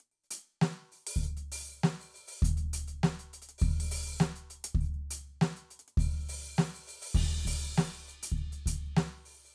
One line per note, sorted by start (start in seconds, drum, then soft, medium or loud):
0.01 open hi-hat soft
0.11 open hi-hat soft
0.24 hi-hat pedal soft
0.31 closed hi-hat loud
0.47 closed hi-hat soft
0.61 snare loud
0.76 open hi-hat soft
0.92 open hi-hat soft
1.07 open hi-hat loud
1.16 kick medium
1.22 hi-hat pedal soft
1.22 open hi-hat soft
1.37 closed hi-hat medium
1.52 open hi-hat loud
1.68 open hi-hat soft
1.83 snare loud
1.99 open hi-hat medium
2.14 open hi-hat medium
2.27 open hi-hat medium
2.39 kick loud
2.39 hi-hat pedal soft
2.44 closed hi-hat loud
2.57 closed hi-hat medium
2.73 closed hi-hat loud
2.88 closed hi-hat medium
3.03 snare loud
3.19 closed hi-hat medium
3.33 closed hi-hat medium
3.42 closed hi-hat medium
3.49 closed hi-hat medium
3.58 open hi-hat medium
3.58 kick loud
3.80 open hi-hat medium
3.91 open hi-hat loud
4.05 open hi-hat medium
4.20 snare loud
4.20 hi-hat pedal soft
4.36 closed hi-hat medium
4.50 closed hi-hat medium
4.64 closed hi-hat loud
4.75 kick loud
4.81 hi-hat pedal soft
4.81 open hi-hat soft
4.94 closed hi-hat soft
5.11 closed hi-hat loud
5.27 closed hi-hat soft
5.41 snare loud
5.56 closed hi-hat soft
5.70 closed hi-hat medium
5.79 closed hi-hat medium
5.88 closed hi-hat soft
5.97 open hi-hat medium
5.97 kick loud
6.29 open hi-hat loud
6.43 open hi-hat soft
6.58 snare loud
6.73 open hi-hat medium
6.87 open hi-hat medium
7.02 open hi-hat loud
7.15 kick loud
7.15 crash loud
7.29 open hi-hat soft
7.45 open hi-hat loud
7.45 kick medium
7.63 open hi-hat soft
7.78 snare loud
8.07 open hi-hat medium
8.07 hi-hat pedal soft
8.23 closed hi-hat loud
8.32 kick medium
8.38 closed hi-hat soft
8.52 closed hi-hat medium
8.66 closed hi-hat loud
8.66 kick medium
8.86 closed hi-hat soft
8.97 snare loud
9.12 open hi-hat soft
9.25 open hi-hat medium
9.34 open hi-hat soft
9.44 open hi-hat soft